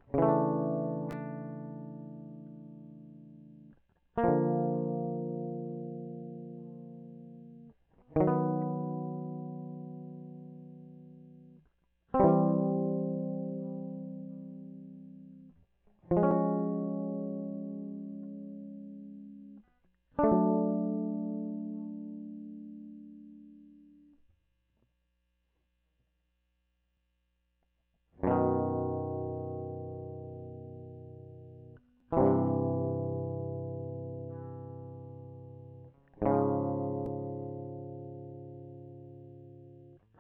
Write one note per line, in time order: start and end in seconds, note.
0.15 3.82 C#3
0.15 3.75 E3
0.23 3.76 A3
0.29 3.75 D4
4.18 7.72 A#3
4.24 7.71 F3
4.29 7.75 D3
8.17 11.66 D#3
8.17 11.63 F#3
8.28 11.60 B3
12.15 15.53 C4
12.20 15.55 G3
12.25 15.55 E3
16.12 19.64 F3
16.17 19.64 G#3
16.23 19.61 C#4
20.19 24.18 D4
20.24 24.16 A3
20.32 24.16 F#3
28.25 31.79 F#2
28.25 31.79 B2
28.32 31.81 D#3
32.13 35.99 E3
32.18 35.89 G2
32.18 35.92 C3
36.23 40.20 G#2
36.23 40.01 C#3
36.32 40.00 F3